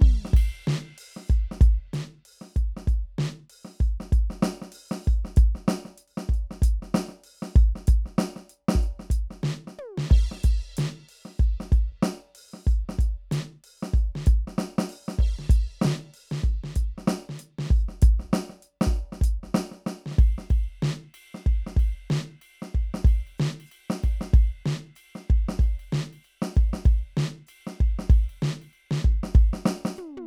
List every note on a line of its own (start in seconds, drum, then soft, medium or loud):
0.01 kick loud
0.01 crash medium
0.26 snare medium
0.34 kick loud
0.34 ride medium
0.68 snare loud
0.68 hi-hat pedal soft
0.99 open hi-hat medium
1.17 snare soft
1.29 kick medium
1.29 open hi-hat medium
1.52 snare medium
1.62 kick loud
1.62 closed hi-hat medium
1.94 snare medium
1.94 closed hi-hat medium
2.26 open hi-hat medium
2.33 open hi-hat soft
2.42 snare soft
2.56 kick medium
2.56 closed hi-hat soft
2.56 hi-hat pedal soft
2.78 snare soft
2.88 kick medium
2.88 closed hi-hat soft
3.19 snare loud
3.50 open hi-hat medium
3.60 open hi-hat soft
3.66 snare soft
3.81 kick medium
3.81 open hi-hat soft
4.01 snare medium
4.13 kick loud
4.13 closed hi-hat medium
4.31 snare soft
4.43 snare loud
4.63 snare soft
4.73 open hi-hat medium
4.92 snare medium
5.06 kick medium
5.06 open hi-hat soft
5.11 hi-hat pedal soft
5.26 snare soft
5.37 closed hi-hat medium
5.37 kick loud
5.56 snare soft
5.69 snare loud
5.86 snare soft
5.98 closed hi-hat medium
6.08 open hi-hat soft
6.18 snare medium
6.30 kick medium
6.30 hi-hat pedal soft
6.35 closed hi-hat soft
6.52 snare soft
6.63 closed hi-hat loud
6.63 kick loud
6.83 snare soft
6.94 snare loud
6.94 hi-hat pedal soft
7.09 snare soft
7.24 open hi-hat medium
7.35 open hi-hat soft
7.43 snare medium
7.56 kick loud
7.56 open hi-hat medium
7.76 snare soft
7.88 closed hi-hat loud
7.88 kick loud
8.07 snare soft
8.19 snare loud
8.19 hi-hat pedal medium
8.37 snare soft
8.50 closed hi-hat medium
8.69 snare loud
8.76 kick medium
8.76 hi-hat pedal soft
8.84 closed hi-hat soft
9.00 snare soft
9.11 closed hi-hat loud
9.11 kick medium
9.31 snare soft
9.44 snare loud
9.68 snare soft
9.79 high tom medium
9.98 snare loud
10.10 kick loud
10.10 crash medium
10.16 hi-hat pedal soft
10.32 snare soft
10.44 closed hi-hat loud
10.44 kick loud
10.78 closed hi-hat loud
10.78 snare loud
11.09 open hi-hat medium
11.18 open hi-hat soft
11.26 snare soft
11.40 kick medium
11.40 open hi-hat soft
11.61 snare medium
11.73 kick loud
11.73 closed hi-hat soft
11.93 kick soft
12.03 snare loud
12.36 open hi-hat medium
12.54 snare soft
12.68 kick medium
12.68 open hi-hat medium
12.90 snare medium
12.99 kick medium
12.99 closed hi-hat medium
13.32 closed hi-hat medium
13.32 snare loud
13.41 snare soft
13.65 open hi-hat medium
13.83 snare medium
13.94 kick medium
13.94 closed hi-hat soft
14.16 snare medium
14.27 closed hi-hat medium
14.27 kick loud
14.48 snare soft
14.59 snare loud
14.79 snare loud
14.90 open hi-hat medium
15.09 snare medium
15.19 kick medium
15.19 crash medium
15.40 snare medium
15.50 closed hi-hat loud
15.50 kick loud
15.82 snare loud
15.86 snare loud
16.15 open hi-hat medium
16.32 snare medium
16.44 kick medium
16.65 snare medium
16.76 closed hi-hat medium
16.76 kick medium
16.99 snare soft
17.08 snare loud
17.30 snare medium
17.40 closed hi-hat medium
17.59 snare medium
17.67 snare soft
17.71 kick loud
17.71 open hi-hat soft
17.82 hi-hat pedal soft
17.89 snare soft
18.03 closed hi-hat loud
18.03 kick loud
18.20 snare soft
18.25 kick soft
18.34 snare loud
18.50 snare soft
18.63 closed hi-hat medium
18.82 snare loud
18.88 kick medium
18.93 closed hi-hat soft
18.93 hi-hat pedal soft
19.13 snare soft
19.22 closed hi-hat loud
19.22 kick medium
19.44 kick soft
19.44 snare soft
19.55 snare loud
19.72 snare soft
19.87 snare medium
20.07 snare medium
20.12 snare soft
20.19 kick loud
20.19 ride soft
20.39 snare soft
20.51 kick medium
20.51 ride soft
20.83 snare loud
20.83 hi-hat pedal soft
21.15 ride medium
21.35 snare soft
21.47 kick medium
21.68 snare medium
21.77 kick medium
21.77 ride soft
22.11 snare loud
22.11 hi-hat pedal medium
22.42 ride soft
22.63 snare medium
22.75 kick medium
22.95 snare medium
23.05 kick loud
23.05 ride soft
23.28 ride bell soft
23.39 snare loud
23.39 hi-hat pedal medium
23.61 ride soft
23.67 hi-hat pedal soft
23.72 ride soft
23.91 snare loud
24.04 kick medium
24.04 ride soft
24.22 snare medium
24.34 kick loud
24.34 ride bell soft
24.67 snare loud
24.67 hi-hat pedal soft
24.96 hi-hat pedal medium
24.96 ride medium
25.16 snare soft
25.31 kick loud
25.49 snare medium
25.60 kick medium
25.60 ride bell soft
25.80 ride soft
25.93 snare loud
25.93 hi-hat pedal soft
26.13 ride bell soft
26.23 hi-hat pedal soft
26.23 ride soft
26.43 snare medium
26.57 kick loud
26.57 ride soft
26.74 snare medium
26.86 kick loud
26.86 ride bell soft
27.18 snare loud
27.18 hi-hat pedal soft
27.48 hi-hat pedal medium
27.48 ride medium
27.68 snare medium
27.81 kick medium
28.00 snare medium
28.11 kick loud
28.11 ride bell soft
28.30 ride soft
28.43 snare loud
28.43 hi-hat pedal soft
28.62 ride bell soft
28.70 hi-hat pedal soft
28.70 ride soft
28.92 snare loud
29.05 kick loud
29.24 snare medium
29.35 kick loud
29.35 ride bell soft
29.54 snare medium
29.66 snare loud
29.66 hi-hat pedal medium
29.86 snare medium
29.97 floor tom medium
29.97 hi-hat pedal medium
30.17 floor tom medium